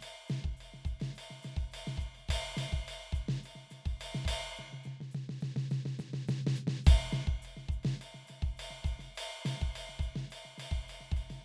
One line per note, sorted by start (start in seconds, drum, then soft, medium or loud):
0.01 hi-hat pedal medium
0.01 ride bell medium
0.28 snare medium
0.28 hi-hat pedal medium
0.28 ride bell soft
0.44 kick soft
0.44 snare soft
0.57 hi-hat pedal medium
0.57 ride bell soft
0.74 snare soft
0.85 kick soft
0.85 hi-hat pedal soft
0.85 ride soft
1.00 snare medium
1.00 ride soft
1.15 hi-hat pedal medium
1.15 ride bell medium
1.30 snare soft
1.42 snare soft
1.42 hi-hat pedal medium
1.42 ride soft
1.57 kick soft
1.57 ride soft
1.72 hi-hat pedal soft
1.72 ride bell medium
1.87 snare medium
1.98 kick soft
1.98 hi-hat pedal medium
1.98 ride soft
2.15 snare soft
2.15 ride soft
2.28 kick soft
2.28 hi-hat pedal soft
2.28 ride loud
2.56 snare medium
2.56 hi-hat pedal medium
2.56 ride medium
2.72 kick soft
2.72 snare soft
2.87 hi-hat pedal medium
2.87 ride medium
3.12 kick soft
3.12 hi-hat pedal medium
3.17 ride soft
3.29 snare medium
3.29 ride soft
3.43 hi-hat pedal medium
3.43 ride bell medium
3.55 snare soft
3.70 snare soft
3.70 hi-hat pedal medium
3.70 ride soft
3.85 kick soft
3.85 ride soft
4.00 hi-hat pedal medium
4.00 ride bell medium
4.15 snare medium
4.25 kick soft
4.25 hi-hat pedal medium
4.25 ride loud
4.56 snare soft
4.56 floor tom soft
4.56 hi-hat pedal medium
4.73 snare soft
4.73 floor tom soft
4.83 snare soft
4.83 hi-hat pedal soft
4.87 floor tom soft
5.01 snare soft
5.01 floor tom soft
5.11 snare soft
5.11 floor tom medium
5.11 hi-hat pedal medium
5.29 snare soft
5.29 floor tom medium
5.40 snare medium
5.40 floor tom medium
5.40 hi-hat pedal soft
5.56 snare medium
5.56 floor tom medium
5.70 snare medium
5.70 floor tom medium
5.70 hi-hat pedal soft
5.85 snare medium
5.85 floor tom medium
5.99 snare medium
5.99 floor tom medium
5.99 hi-hat pedal medium
6.13 snare medium
6.13 floor tom medium
6.28 snare medium
6.28 floor tom loud
6.28 hi-hat pedal medium
6.47 snare medium
6.47 floor tom loud
6.56 hi-hat pedal medium
6.67 snare medium
6.67 floor tom medium
6.84 kick loud
6.84 hi-hat pedal medium
6.84 ride loud
7.12 snare medium
7.12 hi-hat pedal soft
7.27 kick medium
7.42 hi-hat pedal medium
7.42 ride soft
7.57 snare soft
7.68 kick soft
7.68 hi-hat pedal medium
7.68 ride bell soft
7.83 snare medium
7.83 ride soft
8.01 hi-hat pedal medium
8.01 ride medium
8.14 snare soft
8.27 snare soft
8.27 hi-hat pedal medium
8.27 ride soft
8.40 kick soft
8.40 snare soft
8.40 ride soft
8.57 hi-hat pedal soft
8.57 ride bell medium
8.70 snare soft
8.84 kick soft
8.84 hi-hat pedal medium
8.84 ride soft
8.99 snare soft
8.99 ride soft
9.15 hi-hat pedal medium
9.15 ride bell loud
9.44 snare medium
9.44 hi-hat pedal soft
9.44 ride medium
9.60 kick soft
9.60 snare soft
9.73 hi-hat pedal soft
9.73 ride medium
9.89 snare soft
9.99 kick soft
9.99 hi-hat pedal medium
9.99 ride soft
10.16 snare medium
10.16 ride soft
10.30 hi-hat pedal medium
10.30 ride bell medium
10.45 snare soft
10.58 snare soft
10.58 hi-hat pedal medium
10.58 ride medium
10.71 kick soft
10.71 ride soft
10.88 hi-hat pedal medium
10.88 ride bell medium
11.01 snare soft
11.12 kick medium
11.16 hi-hat pedal medium
11.16 ride soft
11.30 snare soft
11.30 ride soft